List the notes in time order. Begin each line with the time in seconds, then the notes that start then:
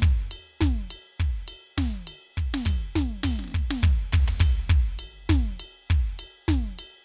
0.01 kick, hi-hat pedal, ride
0.30 hi-hat pedal, ride bell
0.60 kick, snare, hi-hat pedal, ride
0.91 ride bell
1.18 kick, hi-hat pedal, ride
1.49 ride bell
1.78 kick, snare, hi-hat pedal, ride
2.08 ride bell
2.37 kick, hi-hat pedal, ride
2.55 snare
2.66 kick, ride bell
2.95 kick, snare, hi-hat pedal, ride
3.24 kick, snare, ride bell
3.40 snare
3.45 snare
3.48 snare
3.51 snare
3.52 kick, snare, hi-hat pedal, ride
3.71 snare
3.83 kick, ride
4.13 kick, floor tom
4.28 floor tom
4.40 kick, ride bell
4.70 kick, hi-hat pedal
5.00 ride bell
5.29 kick, snare, hi-hat pedal, ride
5.60 ride bell
5.88 kick, hi-hat pedal, ride
6.12 kick
6.20 ride bell
6.47 kick, snare, hi-hat pedal, ride
6.67 kick
6.79 ride bell